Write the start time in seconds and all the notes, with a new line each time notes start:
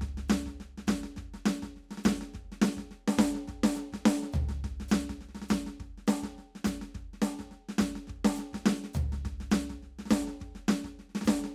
0.01 kick, snare
0.08 kick
0.17 snare
0.28 snare, hi-hat pedal
0.46 kick, snare
0.60 snare
0.77 snare
0.87 kick, snare, hi-hat pedal
0.96 kick
1.03 snare
1.16 kick, snare
1.25 kick
1.34 snare
1.45 snare, hi-hat pedal
1.62 kick, snare
1.76 snare
1.82 snare
1.88 snare
1.91 snare
1.97 snare
2.04 kick, snare, hi-hat pedal
2.10 kick, snare
2.13 kick
2.21 snare
2.34 kick, snare
2.52 snare
2.61 snare, hi-hat pedal
2.77 kick, snare
2.91 snare
3.08 snare
3.17 kick, snare, hi-hat pedal
3.34 snare
3.47 kick, snare
3.55 kick
3.63 snare
3.74 snare, hi-hat pedal
3.92 kick, snare
4.05 snare
4.22 snare
4.32 kick, floor tom, hi-hat pedal
4.45 kick, snare
4.64 kick, snare
4.70 kick
4.80 snare
4.88 snare, hi-hat pedal
5.09 kick, snare
5.21 snare
5.28 snare
5.34 snare
5.42 snare
5.48 kick, snare, hi-hat pedal
5.66 snare
5.80 kick, snare
5.86 kick
5.97 snare
6.07 snare, hi-hat pedal
6.22 kick, snare
6.38 snare
6.55 snare
6.64 kick, snare, hi-hat pedal
6.72 kick
6.75 kick
6.81 snare
6.94 kick, snare
7.02 kick
7.13 snare
7.22 snare, hi-hat pedal
7.39 kick, snare
7.51 snare
7.69 snare
7.78 kick, snare, hi-hat pedal
7.86 kick
7.95 snare
8.07 kick, snare
8.16 kick
8.24 snare
8.35 snare, hi-hat pedal
8.53 kick, snare
8.66 snare
8.84 snare
8.93 kick, floor tom, hi-hat pedal
9.03 kick
9.05 kick
9.12 snare
9.25 kick, snare
9.31 kick
9.36 kick, snare
9.51 snare, hi-hat pedal
9.69 kick, snare
9.75 kick
9.82 snare
9.99 snare
10.05 snare
10.10 kick, snare, hi-hat pedal
10.17 kick
10.27 snare
10.40 kick, snare
10.48 kick
10.55 snare
10.68 snare, hi-hat pedal
10.84 kick, snare
10.99 snare
11.09 snare
11.15 snare
11.21 kick, snare, hi-hat pedal
11.27 snare
11.44 snare